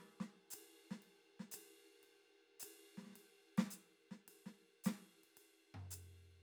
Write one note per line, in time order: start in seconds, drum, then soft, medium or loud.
0.22 snare soft
0.52 hi-hat pedal medium
0.52 ride medium
0.92 snare soft
1.04 ride soft
1.41 snare soft
1.53 hi-hat pedal medium
1.53 ride medium
2.04 ride soft
2.61 hi-hat pedal medium
2.61 ride medium
2.99 snare soft
3.04 snare soft
3.07 snare soft
3.10 snare soft
3.13 snare soft
3.17 ride soft
3.59 snare medium
3.59 ride soft
3.68 snare soft
3.72 hi-hat pedal medium
3.72 ride soft
4.12 snare soft
4.29 ride soft
4.47 snare soft
4.85 snare medium
4.85 hi-hat pedal medium
4.85 ride soft
5.25 ride soft
5.39 ride soft
5.76 floor tom soft
5.92 hi-hat pedal medium
5.92 ride soft